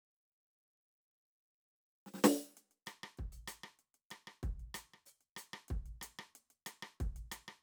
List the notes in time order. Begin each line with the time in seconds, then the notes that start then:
2.06 snare
2.14 snare
2.17 snare
2.24 snare
2.57 closed hi-hat
2.71 closed hi-hat
2.86 closed hi-hat, cross-stick
3.03 cross-stick
3.17 kick, closed hi-hat
3.32 closed hi-hat
3.47 closed hi-hat, cross-stick
3.63 cross-stick
3.79 closed hi-hat
3.94 closed hi-hat
4.10 cross-stick, closed hi-hat
4.27 cross-stick
4.43 kick, closed hi-hat
4.59 closed hi-hat
4.74 closed hi-hat, cross-stick
4.93 cross-stick
5.06 hi-hat pedal, open hi-hat
5.21 closed hi-hat
5.36 closed hi-hat, cross-stick
5.53 cross-stick
5.68 kick, closed hi-hat
5.86 closed hi-hat
6.01 cross-stick, closed hi-hat
6.19 cross-stick
6.35 closed hi-hat
6.50 closed hi-hat
6.66 cross-stick, closed hi-hat
6.82 cross-stick
7.00 kick, closed hi-hat
7.16 closed hi-hat
7.32 cross-stick, closed hi-hat
7.48 cross-stick